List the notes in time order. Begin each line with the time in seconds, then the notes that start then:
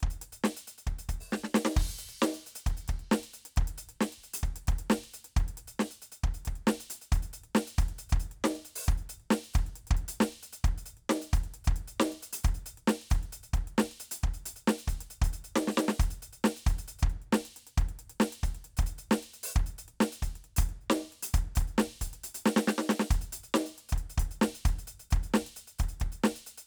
0.01 kick, closed hi-hat
0.11 closed hi-hat
0.22 closed hi-hat
0.33 closed hi-hat
0.44 snare
0.57 closed hi-hat
0.68 closed hi-hat
0.79 closed hi-hat
0.87 kick, closed hi-hat
0.99 closed hi-hat
1.09 closed hi-hat, kick
1.21 open hi-hat
1.31 snare, hi-hat pedal
1.44 snare
1.55 snare
1.66 snare
1.77 kick, crash
1.89 closed hi-hat
2.09 closed hi-hat
2.22 snare
2.34 closed hi-hat
2.47 closed hi-hat
2.56 closed hi-hat
2.67 kick, closed hi-hat
2.78 closed hi-hat
2.88 kick, closed hi-hat
3.00 closed hi-hat
3.12 snare
3.24 closed hi-hat
3.34 closed hi-hat
3.46 closed hi-hat
3.57 kick, closed hi-hat
3.68 closed hi-hat
3.78 closed hi-hat
3.89 closed hi-hat
4.01 snare
4.13 closed hi-hat
4.18 kick
4.24 closed hi-hat
4.34 closed hi-hat
4.44 kick, closed hi-hat
4.56 closed hi-hat
4.68 kick, closed hi-hat
4.79 closed hi-hat
4.91 snare
5.04 closed hi-hat
5.14 closed hi-hat
5.25 closed hi-hat
5.37 kick, closed hi-hat
5.49 closed hi-hat
5.58 closed hi-hat
5.68 closed hi-hat
5.80 snare
5.91 closed hi-hat
6.02 closed hi-hat
6.24 kick, closed hi-hat
6.35 closed hi-hat
6.46 kick, closed hi-hat
6.56 closed hi-hat
6.68 snare
6.81 closed hi-hat
6.91 closed hi-hat
7.02 closed hi-hat
7.12 closed hi-hat, kick
7.23 closed hi-hat
7.34 closed hi-hat
7.44 closed hi-hat
7.56 snare
7.68 closed hi-hat
7.79 closed hi-hat, kick
7.89 closed hi-hat
7.99 closed hi-hat
8.10 closed hi-hat, kick
8.20 closed hi-hat
8.32 closed hi-hat
8.45 snare
8.56 closed hi-hat
8.65 closed hi-hat
8.76 open hi-hat
8.85 kick, closed hi-hat, hi-hat pedal
8.98 closed hi-hat
9.10 closed hi-hat
9.20 closed hi-hat
9.31 snare
9.44 closed hi-hat
9.56 kick
9.67 closed hi-hat
9.76 closed hi-hat
9.88 kick, closed hi-hat
9.97 closed hi-hat
10.09 closed hi-hat
10.21 snare
10.33 closed hi-hat
10.43 closed hi-hat
10.65 kick, closed hi-hat
10.78 closed hi-hat
10.86 closed hi-hat
10.97 closed hi-hat
11.10 snare
11.22 closed hi-hat
11.34 closed hi-hat, kick
11.44 closed hi-hat
11.54 closed hi-hat
11.65 closed hi-hat, kick
11.76 closed hi-hat
11.88 closed hi-hat
12.00 snare
12.12 closed hi-hat
12.23 closed hi-hat
12.33 closed hi-hat
12.44 closed hi-hat, kick
12.55 closed hi-hat
12.66 closed hi-hat
12.78 closed hi-hat
12.88 snare
13.02 closed hi-hat
13.11 closed hi-hat, kick
13.24 closed hi-hat
13.33 closed hi-hat
13.44 closed hi-hat
13.54 kick, closed hi-hat
13.68 closed hi-hat
13.79 snare
13.92 closed hi-hat
14.00 closed hi-hat
14.12 closed hi-hat
14.24 kick, closed hi-hat
14.34 closed hi-hat
14.46 closed hi-hat
14.56 closed hi-hat
14.68 snare
14.79 closed hi-hat
14.88 closed hi-hat, kick
15.01 closed hi-hat
15.11 closed hi-hat
15.22 closed hi-hat, kick
15.34 closed hi-hat
15.45 closed hi-hat
15.56 snare
15.68 snare
15.78 snare
15.89 snare
16.00 closed hi-hat, kick
16.11 closed hi-hat
16.23 closed hi-hat
16.33 closed hi-hat
16.45 snare
16.57 closed hi-hat
16.67 closed hi-hat, kick
16.79 closed hi-hat
16.88 closed hi-hat
16.99 closed hi-hat, kick
17.10 closed hi-hat
17.22 closed hi-hat
17.33 snare
17.46 closed hi-hat
17.57 closed hi-hat
17.67 closed hi-hat
17.78 kick, closed hi-hat
17.89 closed hi-hat
18.00 closed hi-hat
18.10 closed hi-hat
18.21 snare
18.33 closed hi-hat
18.44 closed hi-hat, kick
18.55 closed hi-hat
18.65 closed hi-hat
18.77 closed hi-hat, kick
18.87 closed hi-hat
18.99 closed hi-hat
19.12 snare
19.23 closed hi-hat
19.34 closed hi-hat
19.44 open hi-hat
19.56 kick, closed hi-hat
19.67 closed hi-hat
19.79 closed hi-hat
19.89 closed hi-hat
20.01 snare
20.13 closed hi-hat
20.23 closed hi-hat, kick
20.36 closed hi-hat
20.45 closed hi-hat
20.57 closed hi-hat, kick
20.70 closed hi-hat
20.81 closed hi-hat
20.91 snare
21.13 closed hi-hat
21.23 closed hi-hat
21.34 closed hi-hat, kick
21.46 closed hi-hat
21.56 closed hi-hat, kick
21.68 closed hi-hat
21.79 snare
21.92 closed hi-hat
22.02 closed hi-hat, kick
22.14 closed hi-hat
22.24 closed hi-hat
22.35 closed hi-hat
22.46 snare
22.57 snare
22.68 snare
22.79 snare
22.90 snare
23.00 snare
23.11 closed hi-hat, kick
23.22 closed hi-hat
23.33 closed hi-hat
23.44 closed hi-hat
23.55 snare
23.66 closed hi-hat
23.79 closed hi-hat
23.90 closed hi-hat, kick
23.98 closed hi-hat
24.10 closed hi-hat
24.18 kick, closed hi-hat
24.31 closed hi-hat
24.42 snare
24.55 closed hi-hat
24.66 closed hi-hat, kick
24.79 closed hi-hat
24.88 closed hi-hat
25.00 closed hi-hat
25.11 closed hi-hat, kick
25.24 closed hi-hat
25.34 snare
25.47 closed hi-hat
25.57 closed hi-hat
25.68 closed hi-hat
25.79 closed hi-hat, kick
25.89 closed hi-hat
26.01 kick, closed hi-hat
26.13 closed hi-hat
26.24 snare
26.36 closed hi-hat
26.47 closed hi-hat
26.58 closed hi-hat